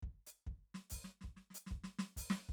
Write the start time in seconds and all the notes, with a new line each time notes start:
0.03 kick
0.27 hi-hat pedal
0.47 kick
0.74 snare
0.90 kick, hi-hat pedal
1.04 snare
1.21 kick, snare
1.37 snare
1.50 snare
1.54 hi-hat pedal
1.67 snare
1.71 kick
1.84 snare
1.99 snare
2.16 kick, hi-hat pedal
2.30 snare
2.49 kick